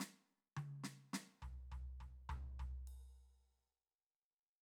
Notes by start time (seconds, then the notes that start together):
0.00 snare, hi-hat pedal
0.57 high tom
0.84 snare
1.13 snare
1.42 floor tom
1.72 floor tom
2.00 floor tom
2.29 floor tom
2.59 floor tom
2.87 crash